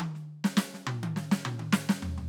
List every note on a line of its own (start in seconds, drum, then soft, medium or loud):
0.01 high tom loud
0.15 snare soft
0.45 snare loud
0.58 snare loud
0.75 snare medium
0.87 mid tom loud
1.04 high tom loud
1.17 snare medium
1.32 snare loud
1.46 mid tom loud
1.60 high tom loud
1.73 snare loud
1.90 snare loud
2.03 floor tom loud
2.18 floor tom medium